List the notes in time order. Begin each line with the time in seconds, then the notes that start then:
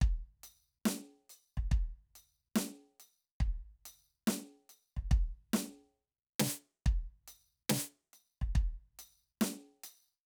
0.02 kick
0.44 closed hi-hat
0.86 snare
1.30 closed hi-hat
1.57 kick
1.72 kick, snare, crash
2.16 closed hi-hat
2.56 snare
3.00 closed hi-hat
3.40 kick
3.86 closed hi-hat
4.28 snare
4.69 closed hi-hat
4.97 kick
5.11 kick, snare, crash, ride
5.54 snare
6.40 snare
6.86 kick, snare
7.28 closed hi-hat
7.70 snare
8.13 closed hi-hat
8.42 kick
8.55 kick, crash, ride
8.99 closed hi-hat
9.41 snare
9.84 closed hi-hat